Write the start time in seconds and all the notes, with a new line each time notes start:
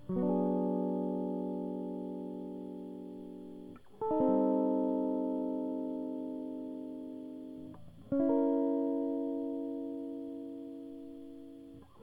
0.09 F#3
0.18 B3
0.23 D4
0.30 G#4
4.02 A4
4.11 D#4
4.19 C4
4.31 G3
8.11 C#4
8.20 E4
8.29 A#4